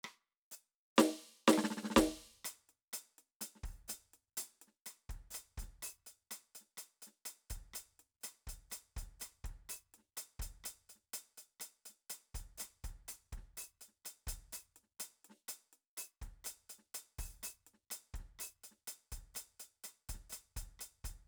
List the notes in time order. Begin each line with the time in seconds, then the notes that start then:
0.03 cross-stick, hi-hat pedal
0.51 hi-hat pedal
0.96 snare, hi-hat pedal
1.47 snare, hi-hat pedal
1.53 cross-stick
1.58 snare
1.64 snare
1.70 snare
1.77 snare
1.83 snare
1.84 snare
1.90 snare
1.96 kick, snare
2.44 closed hi-hat, cross-stick
2.69 closed hi-hat
2.93 closed hi-hat, cross-stick
3.18 closed hi-hat
3.41 closed hi-hat, snare
3.55 snare
3.63 kick, open hi-hat
3.88 closed hi-hat, snare, hi-hat pedal
4.13 closed hi-hat
4.37 closed hi-hat, cross-stick
4.61 closed hi-hat
4.67 snare
4.86 closed hi-hat, cross-stick
5.09 kick, snare, open hi-hat
5.30 closed hi-hat, cross-stick, hi-hat pedal
5.57 closed hi-hat, kick, snare
5.82 open hi-hat, cross-stick
6.06 closed hi-hat
6.31 closed hi-hat, cross-stick, snare
6.55 closed hi-hat
6.61 snare
6.77 closed hi-hat, cross-stick
7.02 closed hi-hat
7.07 snare
7.25 closed hi-hat, cross-stick
7.50 closed hi-hat, kick
7.73 closed hi-hat, cross-stick, snare, hi-hat pedal
7.99 closed hi-hat
8.21 closed hi-hat, cross-stick, hi-hat pedal
8.47 closed hi-hat, kick
8.70 closed hi-hat, cross-stick, hi-hat pedal
8.96 closed hi-hat, kick
9.01 snare
9.20 closed hi-hat, cross-stick, hi-hat pedal
9.44 kick, closed hi-hat
9.69 open hi-hat, cross-stick
9.94 snare, closed hi-hat
9.98 snare
10.17 closed hi-hat, cross-stick, snare
10.39 closed hi-hat, kick
10.64 closed hi-hat, cross-stick
10.89 closed hi-hat
10.95 snare
11.13 closed hi-hat, cross-stick
11.37 closed hi-hat
11.60 closed hi-hat, cross-stick
11.85 closed hi-hat, snare
12.10 closed hi-hat, cross-stick
12.34 closed hi-hat, kick, snare
12.57 closed hi-hat, cross-stick, snare, hi-hat pedal
12.84 closed hi-hat, kick
13.08 open hi-hat, cross-stick
13.32 kick, closed hi-hat
13.37 snare
13.57 open hi-hat, cross-stick
13.81 closed hi-hat
13.88 snare
14.04 closed hi-hat, cross-stick, snare
14.27 open hi-hat, kick
14.52 open hi-hat, cross-stick, hi-hat pedal
14.76 closed hi-hat
14.83 snare
14.99 closed hi-hat, cross-stick, snare
15.24 snare, closed hi-hat
15.30 snare
15.48 closed hi-hat, cross-stick
15.73 closed hi-hat
15.97 open hi-hat, cross-stick, snare
16.21 kick, snare, open hi-hat
16.44 closed hi-hat, cross-stick, hi-hat pedal
16.69 closed hi-hat
16.78 snare
16.94 closed hi-hat, cross-stick
17.18 open hi-hat, kick
17.42 open hi-hat, cross-stick, snare, hi-hat pedal
17.66 closed hi-hat
17.73 snare
17.90 closed hi-hat, cross-stick
18.14 kick, closed hi-hat
18.19 snare
18.39 open hi-hat, cross-stick
18.63 closed hi-hat
18.71 snare
18.87 closed hi-hat, cross-stick
19.12 closed hi-hat, kick
19.34 closed hi-hat, cross-stick, hi-hat pedal
19.59 closed hi-hat
19.84 closed hi-hat, cross-stick
20.09 closed hi-hat, kick
20.14 snare
20.29 closed hi-hat, cross-stick, hi-hat pedal
20.56 closed hi-hat, kick
20.79 closed hi-hat, cross-stick
21.04 closed hi-hat, kick